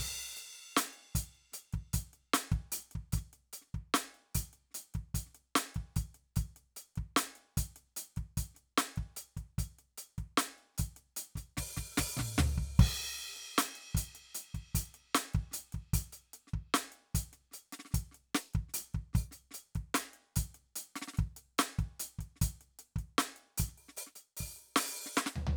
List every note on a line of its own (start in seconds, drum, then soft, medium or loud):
0.32 hi-hat pedal soft
0.37 closed hi-hat medium
0.77 closed hi-hat loud
0.77 snare loud
0.94 closed hi-hat soft
1.16 closed hi-hat loud
1.16 kick medium
1.35 closed hi-hat soft
1.53 closed hi-hat medium
1.53 snare soft
1.73 kick medium
1.73 closed hi-hat soft
1.94 closed hi-hat loud
1.94 kick medium
2.14 closed hi-hat soft
2.34 closed hi-hat loud
2.34 snare loud
2.52 kick medium
2.52 closed hi-hat soft
2.72 closed hi-hat loud
2.92 closed hi-hat soft
2.96 kick soft
3.13 closed hi-hat medium
3.13 kick medium
3.17 snare soft
3.34 closed hi-hat soft
3.53 closed hi-hat medium
3.62 snare soft
3.68 snare soft
3.75 kick soft
3.75 closed hi-hat soft
3.95 closed hi-hat loud
3.95 snare loud
4.15 closed hi-hat soft
4.35 closed hi-hat loud
4.35 kick medium
4.54 closed hi-hat soft
4.71 closed hi-hat medium
4.71 snare soft
4.95 kick soft
4.95 closed hi-hat soft
5.15 closed hi-hat loud
5.15 kick medium
5.27 snare soft
5.30 snare soft
5.35 closed hi-hat soft
5.56 closed hi-hat loud
5.56 snare loud
5.75 kick soft
5.75 closed hi-hat soft
5.97 closed hi-hat medium
5.97 kick medium
6.15 closed hi-hat soft
6.36 closed hi-hat medium
6.36 kick medium
6.57 closed hi-hat soft
6.77 closed hi-hat medium
6.96 kick medium
6.96 closed hi-hat soft
7.17 closed hi-hat loud
7.17 snare loud
7.36 closed hi-hat soft
7.58 closed hi-hat loud
7.58 kick medium
7.77 closed hi-hat soft
7.97 closed hi-hat loud
8.17 kick soft
8.17 closed hi-hat soft
8.38 closed hi-hat medium
8.38 kick medium
8.55 snare soft
8.55 closed hi-hat soft
8.78 closed hi-hat loud
8.78 snare loud
8.96 kick medium
8.96 closed hi-hat soft
9.17 closed hi-hat medium
9.37 kick soft
9.37 closed hi-hat soft
9.59 closed hi-hat medium
9.59 kick medium
9.79 closed hi-hat soft
9.98 closed hi-hat medium
10.19 kick soft
10.19 closed hi-hat soft
10.38 closed hi-hat loud
10.38 snare loud
10.59 closed hi-hat soft
10.75 closed hi-hat loud
10.75 snare soft
10.80 kick medium
10.97 closed hi-hat soft
11.17 closed hi-hat loud
11.36 closed hi-hat medium
11.36 kick soft
11.36 snare soft
11.58 open hi-hat loud
11.58 kick soft
11.58 snare medium
11.77 kick soft
11.77 snare soft
11.77 open hi-hat medium
11.98 open hi-hat loud
11.98 kick soft
11.98 snare loud
12.17 kick soft
12.17 snare medium
12.17 mid tom medium
12.39 snare loud
12.39 floor tom loud
12.58 kick medium
12.80 kick loud
12.80 crash loud
13.19 closed hi-hat soft
13.37 closed hi-hat soft
13.59 closed hi-hat loud
13.59 snare loud
13.76 closed hi-hat soft
13.95 closed hi-hat loud
13.95 kick medium
14.16 closed hi-hat medium
14.35 closed hi-hat loud
14.55 kick soft
14.55 snare soft
14.55 closed hi-hat soft
14.75 closed hi-hat loud
14.75 kick medium
14.95 snare soft
14.95 closed hi-hat soft
15.15 closed hi-hat loud
15.15 snare loud
15.34 kick medium
15.34 closed hi-hat soft
15.52 closed hi-hat loud
15.52 snare soft
15.73 kick soft
15.73 closed hi-hat soft
15.94 closed hi-hat loud
15.94 kick medium
16.13 closed hi-hat medium
16.34 closed hi-hat medium
16.48 snare soft
16.54 kick medium
16.75 closed hi-hat medium
16.75 snare loud
16.93 closed hi-hat soft
17.15 closed hi-hat loud
17.15 kick medium
17.33 snare soft
17.33 closed hi-hat soft
17.52 closed hi-hat medium
17.52 snare soft
17.73 snare medium
17.73 closed hi-hat medium
17.80 snare soft
17.86 snare soft
17.91 kick medium
17.91 snare soft
17.91 closed hi-hat loud
18.12 snare soft
18.12 closed hi-hat soft
18.35 closed hi-hat medium
18.35 snare loud
18.54 kick medium
18.54 closed hi-hat soft
18.69 snare soft
18.74 closed hi-hat loud
18.94 kick medium
18.94 closed hi-hat soft
19.14 open hi-hat medium
19.14 kick medium
19.14 snare soft
19.32 closed hi-hat soft
19.32 snare soft
19.51 closed hi-hat medium
19.51 snare soft
19.76 kick medium
19.76 closed hi-hat soft
19.95 closed hi-hat loud
19.95 snare loud
20.14 closed hi-hat soft
20.36 closed hi-hat loud
20.36 kick medium
20.55 closed hi-hat soft
20.76 closed hi-hat loud
20.96 snare medium
20.96 closed hi-hat medium
21.02 snare medium
21.08 snare medium
21.14 snare soft
21.14 closed hi-hat soft
21.19 kick medium
21.37 closed hi-hat medium
21.59 closed hi-hat loud
21.59 snare loud
21.79 kick medium
21.79 closed hi-hat soft
22.00 closed hi-hat loud
22.19 kick soft
22.19 closed hi-hat soft
22.36 snare soft
22.42 closed hi-hat loud
22.42 kick medium
22.61 closed hi-hat soft
22.79 closed hi-hat medium
22.96 kick medium
22.96 closed hi-hat soft
23.19 closed hi-hat medium
23.19 snare loud
23.37 closed hi-hat soft
23.49 snare soft
23.58 closed hi-hat loud
23.58 kick medium
23.69 snare soft
23.78 open hi-hat soft
23.89 snare soft
23.97 open hi-hat loud
23.97 hi-hat pedal medium
24.07 snare soft
24.16 closed hi-hat medium
24.37 open hi-hat loud
24.37 kick soft
24.57 open hi-hat soft
24.77 open hi-hat loud
24.77 snare loud
24.95 open hi-hat medium
25.06 snare soft
25.15 snare loud
25.15 hi-hat pedal soft
25.27 snare loud
25.36 floor tom medium
25.47 floor tom loud